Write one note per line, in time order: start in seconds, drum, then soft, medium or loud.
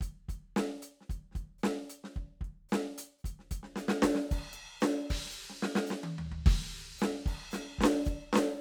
0.01 closed hi-hat medium
0.01 kick medium
0.28 closed hi-hat soft
0.28 kick medium
0.56 snare loud
0.82 closed hi-hat medium
1.01 snare soft
1.09 closed hi-hat soft
1.09 kick medium
1.31 kick medium
1.31 snare soft
1.35 closed hi-hat soft
1.58 hi-hat pedal soft
1.63 snare loud
1.90 closed hi-hat medium
2.04 snare medium
2.14 kick medium
2.14 closed hi-hat soft
2.14 hi-hat pedal soft
2.41 kick medium
2.41 closed hi-hat soft
2.69 snare loud
2.69 hi-hat pedal soft
2.98 closed hi-hat loud
3.18 hi-hat pedal soft
3.24 closed hi-hat medium
3.24 kick medium
3.39 snare soft
3.51 open hi-hat medium
3.51 kick medium
3.63 snare soft
3.76 snare medium
3.76 hi-hat pedal medium
3.88 snare loud
4.02 kick soft
4.02 snare loud
4.15 snare medium
4.31 kick medium
4.31 hi-hat pedal medium
4.31 crash medium
4.53 closed hi-hat medium
4.80 snare loud
4.80 hi-hat pedal medium
5.10 kick medium
5.10 crash loud
5.25 snare soft
5.30 hi-hat pedal medium
5.50 snare soft
5.62 snare loud
5.75 snare loud
5.86 hi-hat pedal medium
5.90 snare medium
6.03 high tom medium
6.18 floor tom medium
6.31 kick soft
6.31 floor tom medium
6.46 kick loud
6.46 hi-hat pedal medium
6.46 crash loud
6.98 snare loud
6.98 hi-hat pedal medium
7.26 kick medium
7.26 crash medium
7.51 closed hi-hat soft
7.51 snare medium
7.51 hi-hat pedal medium
7.78 kick medium
7.78 snare loud
7.84 snare loud
8.05 kick medium
8.05 hi-hat pedal medium
8.33 snare loud
8.36 snare loud